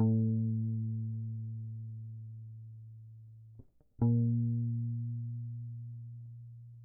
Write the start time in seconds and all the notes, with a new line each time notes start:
0.00 A2
4.02 A#2